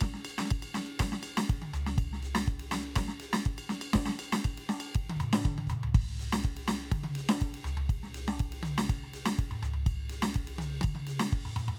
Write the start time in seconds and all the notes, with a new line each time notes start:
0.01 kick, snare, hi-hat pedal, ride bell
0.14 snare
0.18 snare
0.25 hi-hat pedal, ride bell
0.38 snare
0.46 snare
0.51 kick, hi-hat pedal, ride bell
0.63 ride bell
0.75 snare, hi-hat pedal
0.86 ride
1.00 kick, snare, hi-hat pedal, ride bell
1.12 snare
1.23 hi-hat pedal, ride bell
1.37 snare
1.49 kick, hi-hat pedal, ride
1.62 high tom
1.74 floor tom, hi-hat pedal
1.87 snare
1.98 kick, hi-hat pedal, ride bell
2.13 snare
2.18 snare
2.21 snare, hi-hat pedal, ride
2.35 snare
2.47 kick, hi-hat pedal, ride
2.60 ride
2.72 snare, hi-hat pedal
2.84 ride
2.96 kick, snare, hi-hat pedal, ride bell
3.08 snare
3.20 hi-hat pedal, ride
3.33 snare
3.45 kick, hi-hat pedal, ride
3.58 ride bell
3.70 snare, hi-hat pedal
3.82 ride bell
3.94 kick, snare, hi-hat pedal, ride
4.06 snare
4.09 snare
4.19 hi-hat pedal, ride bell
4.33 snare
4.45 kick, hi-hat pedal, ride bell
4.58 ride
4.69 snare, hi-hat pedal
4.80 ride bell
4.95 kick, hi-hat pedal, ride
5.10 high tom
5.16 kick, hi-hat pedal, mid tom
5.33 snare
5.44 kick, hi-hat pedal, high tom
5.58 high tom
5.67 kick, hi-hat pedal, mid tom
5.83 floor tom
5.94 kick, hi-hat pedal, crash
6.20 hi-hat pedal, ride
6.33 snare
6.44 kick, hi-hat pedal, ride
6.57 ride
6.68 snare, hi-hat pedal
6.80 ride
6.92 kick, hi-hat pedal, high tom, ride
7.04 high tom
7.15 hi-hat pedal, ride
7.29 snare
7.41 kick, hi-hat pedal, ride
7.54 ride
7.65 floor tom, hi-hat pedal
7.77 floor tom
7.90 kick, hi-hat pedal, ride
8.03 snare
8.07 snare
8.15 hi-hat pedal, ride
8.28 snare
8.40 kick, hi-hat pedal, ride
8.52 ride
8.63 hi-hat pedal, high tom
8.78 snare
8.90 kick, hi-hat pedal, ride bell
9.04 cross-stick
9.14 hi-hat pedal, ride
9.26 snare
9.38 kick, hi-hat pedal, ride
9.51 mid tom
9.63 floor tom, hi-hat pedal
9.74 floor tom
9.86 kick, hi-hat pedal, ride bell
10.10 hi-hat pedal, ride
10.23 snare
10.35 kick, hi-hat pedal, ride
10.48 ride
10.59 hi-hat pedal, high tom
10.70 ride
10.81 kick, high tom, ride bell
10.86 hi-hat pedal
10.95 high tom
11.07 hi-hat pedal, ride
11.20 snare
11.32 kick, hi-hat pedal, ride
11.45 mid tom
11.56 hi-hat pedal, mid tom
11.68 mid tom